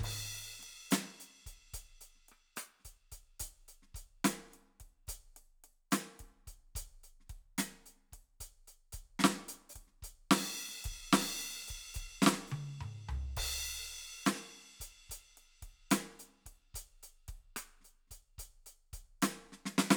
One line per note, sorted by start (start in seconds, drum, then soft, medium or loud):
0.01 kick soft
0.01 crash loud
0.06 kick soft
0.35 open hi-hat soft
0.60 snare soft
0.60 closed hi-hat soft
0.91 closed hi-hat loud
0.91 snare loud
1.20 closed hi-hat soft
1.47 closed hi-hat soft
1.47 kick soft
1.74 closed hi-hat medium
1.74 kick soft
2.01 closed hi-hat soft
2.16 snare soft
2.29 cross-stick soft
2.29 closed hi-hat soft
2.57 open hi-hat medium
2.57 cross-stick medium
2.57 hi-hat pedal soft
2.80 snare soft
2.85 closed hi-hat soft
2.85 kick soft
3.12 closed hi-hat medium
3.12 kick soft
3.40 closed hi-hat medium
3.40 kick soft
3.68 closed hi-hat soft
3.83 snare soft
3.88 snare soft
3.91 kick soft
3.91 snare soft
3.96 closed hi-hat medium
4.25 closed hi-hat loud
4.25 snare loud
4.52 snare soft
4.52 closed hi-hat soft
4.80 kick soft
4.80 closed hi-hat soft
5.07 closed hi-hat medium
5.07 kick soft
5.07 hi-hat pedal soft
5.37 closed hi-hat soft
5.64 closed hi-hat soft
5.91 closed hi-hat loud
5.91 snare loud
5.91 hi-hat pedal soft
6.20 kick soft
6.20 closed hi-hat soft
6.48 closed hi-hat soft
6.48 kick soft
6.76 closed hi-hat medium
6.76 kick soft
6.81 kick soft
7.04 closed hi-hat soft
7.20 snare soft
7.27 kick soft
7.27 snare soft
7.27 closed hi-hat soft
7.58 closed hi-hat loud
7.58 snare medium
7.86 closed hi-hat soft
8.13 kick soft
8.13 closed hi-hat soft
8.41 closed hi-hat medium
8.41 kick soft
8.68 closed hi-hat soft
8.93 closed hi-hat medium
8.93 kick soft
9.20 snare medium
9.24 snare loud
9.31 snare soft
9.49 open hi-hat medium
9.70 hi-hat pedal medium
9.76 kick soft
9.76 closed hi-hat soft
9.87 snare soft
10.03 closed hi-hat medium
10.03 kick soft
10.31 snare loud
10.31 crash loud
10.41 snare soft
10.57 closed hi-hat soft
10.68 snare soft
10.84 kick soft
10.84 snare soft
10.84 closed hi-hat medium
10.92 kick soft
11.13 snare loud
11.13 crash loud
11.22 snare soft
11.39 closed hi-hat soft
11.51 snare soft
11.68 closed hi-hat medium
11.68 kick soft
11.94 closed hi-hat medium
11.94 kick soft
11.94 snare soft
12.02 kick soft
12.22 snare loud
12.27 snare loud
12.33 snare medium
12.48 hi-hat pedal soft
12.52 high tom loud
12.81 mid tom medium
13.09 floor tom medium
13.37 kick soft
13.37 crash loud
13.44 kick soft
14.24 closed hi-hat medium
14.24 snare loud
14.24 hi-hat pedal soft
14.36 snare soft
14.81 closed hi-hat medium
14.81 kick soft
15.10 closed hi-hat medium
15.10 kick soft
15.37 closed hi-hat soft
15.63 kick soft
15.63 closed hi-hat soft
15.91 closed hi-hat loud
15.91 snare loud
16.20 closed hi-hat medium
16.41 snare soft
16.46 kick soft
16.46 closed hi-hat soft
16.75 closed hi-hat medium
16.75 kick soft
17.03 closed hi-hat soft
17.28 kick soft
17.28 closed hi-hat soft
17.57 closed hi-hat medium
17.57 cross-stick medium
17.81 closed hi-hat soft
17.81 snare soft
18.07 closed hi-hat medium
18.07 kick soft
18.07 snare soft
18.39 closed hi-hat medium
18.39 kick soft
18.66 closed hi-hat soft
18.93 closed hi-hat medium
18.93 kick soft
19.22 closed hi-hat loud
19.22 snare loud
19.53 snare soft
19.66 snare medium
19.78 snare loud
19.91 snare loud